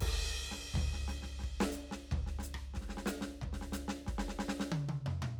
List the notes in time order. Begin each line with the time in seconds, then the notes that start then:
0.01 kick, ride
0.36 snare
0.51 kick, snare
0.74 kick, floor tom
0.93 snare
1.08 snare, hi-hat pedal
1.22 kick, snare
1.39 snare
1.43 kick
1.60 snare
1.72 snare, hi-hat pedal
1.91 kick, snare
2.11 kick, floor tom
2.26 snare
2.39 snare
2.43 hi-hat pedal
2.54 kick, cross-stick
2.74 kick, snare
2.81 snare
2.87 snare
2.89 snare
3.06 snare, hi-hat pedal
3.21 kick, snare
3.41 kick, floor tom
3.53 snare
3.61 snare
3.72 snare, hi-hat pedal
3.88 snare
4.06 kick, snare
4.16 kick, snare
4.39 snare
4.48 snare
4.60 snare
4.72 high tom
4.89 high tom
5.06 mid tom
5.22 mid tom